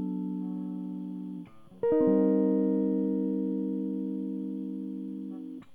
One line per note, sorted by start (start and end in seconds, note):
1.84 5.48 A#4
1.93 5.61 D#4
2.02 5.66 C4
2.09 5.44 G3